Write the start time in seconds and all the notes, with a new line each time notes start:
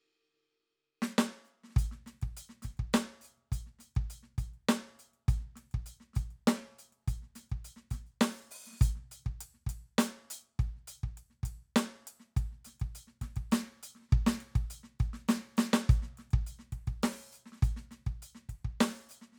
1.02 snare
1.18 snare
1.32 snare
1.45 hi-hat pedal
1.64 snare
1.67 snare
1.70 snare
1.74 closed hi-hat, kick, snare
1.91 snare
2.06 snare, closed hi-hat
2.22 kick, closed hi-hat
2.37 closed hi-hat
2.49 snare
2.62 closed hi-hat, kick, snare
2.77 kick, closed hi-hat
2.93 closed hi-hat, snare
3.21 closed hi-hat, hi-hat pedal
3.37 closed hi-hat
3.52 closed hi-hat, kick
3.66 snare
3.79 closed hi-hat, snare
3.95 kick, closed hi-hat
4.10 closed hi-hat
4.23 snare
4.38 closed hi-hat, kick
4.54 closed hi-hat
4.69 closed hi-hat, snare
4.99 closed hi-hat
5.13 closed hi-hat
5.28 closed hi-hat, kick
5.39 snare
5.56 snare, closed hi-hat
5.71 kick, closed hi-hat
5.86 closed hi-hat
6.00 snare
6.13 closed hi-hat, kick, snare
6.31 closed hi-hat
6.47 closed hi-hat, snare
6.55 snare
6.79 closed hi-hat
6.92 closed hi-hat
7.02 snare
7.08 closed hi-hat, kick
7.22 snare
7.35 closed hi-hat, snare
7.50 kick, closed hi-hat
7.64 closed hi-hat
7.76 snare
7.91 closed hi-hat, kick, snare
8.06 closed hi-hat
8.21 open hi-hat, snare
8.51 open hi-hat
8.67 snare
8.71 snare
8.73 snare
8.79 closed hi-hat, kick, hi-hat pedal
8.96 snare
9.11 closed hi-hat
9.25 kick, snare
9.41 closed hi-hat
9.54 snare
9.67 kick, snare, closed hi-hat
9.98 closed hi-hat, snare
10.30 closed hi-hat
10.59 kick, closed hi-hat
10.76 snare
10.87 closed hi-hat
11.03 kick, snare
11.17 closed hi-hat
11.30 snare
11.43 kick, closed hi-hat
11.76 closed hi-hat, snare
12.07 closed hi-hat
12.20 snare
12.37 kick, closed hi-hat
12.52 snare
12.65 closed hi-hat, snare
12.80 kick, closed hi-hat
12.95 closed hi-hat
13.07 snare
13.21 kick, snare, closed hi-hat
13.36 kick, closed hi-hat
13.52 closed hi-hat, snare
13.77 snare
13.83 closed hi-hat
13.95 snare
13.99 snare
14.01 snare
14.09 kick, snare, closed hi-hat
14.26 snare
14.40 snare, closed hi-hat
14.55 kick, closed hi-hat
14.70 closed hi-hat
14.83 snare
14.99 closed hi-hat, kick
15.13 snare
15.28 snare, hi-hat pedal
15.57 snare, hi-hat pedal
15.73 snare
15.89 closed hi-hat, kick
16.02 snare
16.17 snare, closed hi-hat
16.31 kick, closed hi-hat
16.46 closed hi-hat
16.59 snare
16.72 kick, closed hi-hat
16.87 kick, closed hi-hat
17.03 open hi-hat, snare
17.12 snare
17.16 snare
17.23 snare
17.32 closed hi-hat, hi-hat pedal
17.46 snare
17.52 snare
17.55 snare
17.62 closed hi-hat, kick
17.76 snare
17.91 snare, closed hi-hat
18.06 kick, closed hi-hat
18.22 closed hi-hat
18.35 snare
18.49 kick, closed hi-hat
18.64 kick, closed hi-hat
18.80 open hi-hat, snare
18.88 snare
19.09 closed hi-hat, hi-hat pedal
19.21 snare
19.32 snare
19.35 snare